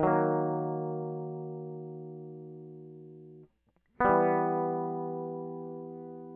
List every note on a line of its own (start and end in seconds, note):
0.00 3.48 D#3
0.00 3.47 F#3
0.08 3.47 A#3
4.01 6.36 B3
4.06 6.36 G3
4.10 6.36 E3